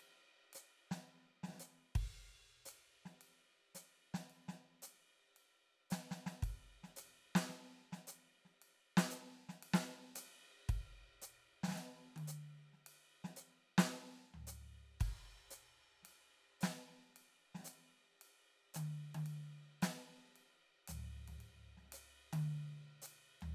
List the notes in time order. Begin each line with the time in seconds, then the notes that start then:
0.01 ride
0.54 hi-hat pedal, ride
0.92 snare
1.08 ride
1.44 snare
1.49 snare
1.53 snare
1.56 snare
1.61 hi-hat pedal, ride
1.96 kick, ride, crash
2.11 ride
2.66 hi-hat pedal, ride
3.06 snare
3.22 ride
3.75 snare, hi-hat pedal, ride
4.15 snare, ride
4.31 ride
4.49 snare
4.83 hi-hat pedal, ride
5.37 ride
5.91 snare, hi-hat pedal, ride
6.12 snare
6.27 snare
6.43 kick, ride
6.84 snare
6.91 snare
6.97 hi-hat pedal, ride
7.36 snare, ride
7.50 snare
7.93 snare
8.08 hi-hat pedal, ride
8.46 snare
8.63 ride
8.98 snare, ride
9.11 hi-hat pedal, ride
9.50 snare
9.64 ride
9.75 snare
10.16 hi-hat pedal, ride
10.61 crash
10.70 kick, ride
11.23 hi-hat pedal, ride
11.64 snare
11.69 snare
11.72 snare
11.75 snare
11.77 snare, ride
12.17 high tom, ride
12.28 hi-hat pedal, ride
12.74 snare
12.87 ride
13.25 snare
13.37 hi-hat pedal
13.42 ride
13.79 snare, ride
14.35 floor tom
14.48 hi-hat pedal, ride
15.01 kick, ride, crash
15.51 hi-hat pedal, ride
16.04 snare, ride
16.62 snare, hi-hat pedal, ride
17.04 ride
17.17 ride
17.55 snare
17.59 snare
17.61 snare
17.66 hi-hat pedal, ride
18.22 ride
18.75 hi-hat pedal, high tom, ride
19.16 high tom, ride
19.27 ride
19.83 snare, hi-hat pedal, ride
20.37 ride
20.89 floor tom, hi-hat pedal, ride
21.29 floor tom, ride
21.41 ride
21.78 snare
21.83 snare
21.86 snare
21.93 hi-hat pedal, ride
22.34 high tom, ride
23.03 hi-hat pedal
23.07 ride
23.42 floor tom, ride